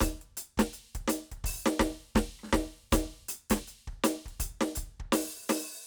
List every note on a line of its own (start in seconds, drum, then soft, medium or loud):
0.01 open hi-hat loud
0.01 kick medium
0.01 snare loud
0.01 hi-hat pedal soft
0.22 closed hi-hat soft
0.37 closed hi-hat loud
0.58 kick medium
0.58 snare loud
0.58 closed hi-hat medium
0.74 closed hi-hat medium
0.95 kick medium
0.95 closed hi-hat medium
1.08 closed hi-hat loud
1.08 snare loud
1.32 kick soft
1.32 closed hi-hat medium
1.45 open hi-hat loud
1.45 kick medium
1.66 snare loud
1.80 kick medium
1.80 snare loud
2.11 cross-stick soft
2.16 kick medium
2.16 snare loud
2.40 cross-stick soft
2.44 snare soft
2.46 snare soft
2.48 snare soft
2.53 kick medium
2.53 snare loud
2.91 closed hi-hat loud
2.91 kick loud
2.91 snare loud
2.91 hi-hat pedal soft
3.29 closed hi-hat loud
3.50 closed hi-hat loud
3.50 kick medium
3.50 snare loud
3.57 snare soft
3.68 closed hi-hat medium
3.88 kick soft
4.04 closed hi-hat loud
4.04 snare loud
4.26 kick soft
4.26 closed hi-hat soft
4.40 closed hi-hat loud
4.40 kick medium
4.61 snare loud
4.76 closed hi-hat loud
4.76 kick medium
5.00 kick soft
5.13 open hi-hat loud
5.13 snare loud
5.49 open hi-hat loud
5.49 snare loud